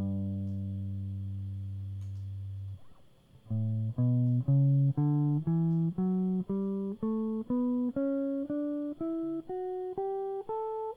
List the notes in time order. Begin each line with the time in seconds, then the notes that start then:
0.00 G2
3.51 A2
3.99 B2
4.49 C#3
4.98 D3
5.48 E3
5.99 F#3
6.50 G3
7.03 A3
7.50 B3
7.96 C#4
8.54 D4
9.01 E4
9.49 F#4
9.97 G4
10.49 A4